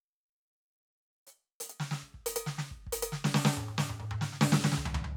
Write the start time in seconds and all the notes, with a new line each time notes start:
1.27 hi-hat pedal
1.60 closed hi-hat
1.69 closed hi-hat
1.80 snare
1.91 snare
2.02 kick
2.14 kick
2.26 closed hi-hat
2.36 closed hi-hat
2.46 snare
2.58 snare
2.71 kick
2.87 kick
2.92 closed hi-hat
3.02 closed hi-hat
3.12 snare
3.24 snare
3.34 snare
3.45 snare
3.57 high tom
3.68 high tom
3.78 snare
3.89 high tom
4.00 high tom
4.11 high tom
4.21 snare
4.32 snare
4.41 snare
4.52 snare
4.64 snare
4.72 snare
4.77 floor tom
4.85 floor tom
4.94 floor tom
5.04 floor tom